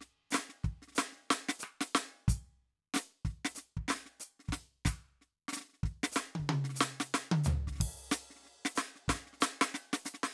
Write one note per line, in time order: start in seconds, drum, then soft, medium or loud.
0.01 snare soft
0.31 snare medium
0.31 hi-hat pedal loud
0.35 snare loud
0.39 snare medium
0.49 snare soft
0.64 kick medium
0.64 snare soft
0.82 snare soft
0.88 snare soft
0.92 snare soft
0.95 snare soft
0.95 hi-hat pedal loud
0.98 snare loud
1.12 snare soft
1.16 snare soft
1.19 snare soft
1.22 snare soft
1.28 snare soft
1.31 snare loud
1.49 snare loud
1.59 cross-stick medium
1.59 hi-hat pedal loud
1.81 snare loud
1.95 snare loud
2.28 kick medium
2.28 hi-hat pedal loud
2.94 snare loud
2.94 hi-hat pedal loud
2.96 snare loud
3.10 snare soft
3.15 snare soft
3.25 kick medium
3.25 snare soft
3.29 snare soft
3.45 snare loud
3.55 snare soft
3.55 hi-hat pedal loud
3.77 kick soft
3.88 snare medium
3.90 snare medium
3.95 snare soft
4.06 snare soft
4.20 snare soft
4.20 hi-hat pedal loud
4.40 snare soft
4.44 snare soft
4.48 kick soft
4.48 snare soft
4.50 snare soft
4.52 snare medium
4.85 kick medium
4.85 cross-stick medium
4.85 snare medium
4.85 hi-hat pedal loud
5.21 snare soft
5.48 snare medium
5.53 snare medium
5.53 hi-hat pedal loud
5.57 snare medium
5.61 snare soft
5.65 snare soft
5.69 snare soft
5.73 snare soft
5.78 snare soft
5.83 kick medium
5.83 snare soft
6.03 snare loud
6.12 hi-hat pedal loud
6.16 snare loud
6.35 high tom medium
6.40 kick soft
6.49 high tom loud
6.64 snare soft
6.70 snare soft
6.74 snare soft
6.74 hi-hat pedal loud
6.78 snare soft
6.81 snare loud
7.00 snare loud
7.14 snare loud
7.32 high tom loud
7.44 floor tom loud
7.44 hi-hat pedal loud
7.67 kick soft
7.67 snare soft
7.72 snare soft
7.75 snare soft
7.78 snare soft
7.80 kick medium
7.80 snare soft
7.80 ride loud
8.11 snare loud
8.11 hi-hat pedal loud
8.30 snare soft
8.36 snare soft
8.40 snare soft
8.43 snare soft
8.46 snare soft
8.65 snare loud
8.76 snare loud
8.76 hi-hat pedal loud
8.96 snare soft
9.08 kick medium
9.08 snare loud
9.15 snare soft
9.26 snare soft
9.33 snare soft
9.37 snare soft
9.37 hi-hat pedal loud
9.41 snare soft
9.41 snare loud
9.61 snare loud
9.74 snare medium
9.93 snare loud
10.05 snare medium
10.05 hi-hat pedal loud
10.14 snare soft
10.23 snare medium